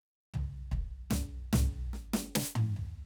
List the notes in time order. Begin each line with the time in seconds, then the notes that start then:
0.34 floor tom, high tom
0.72 kick, floor tom
1.10 snare, floor tom
1.53 snare, floor tom
1.93 snare
2.14 snare
2.35 snare
2.55 mid tom
2.76 floor tom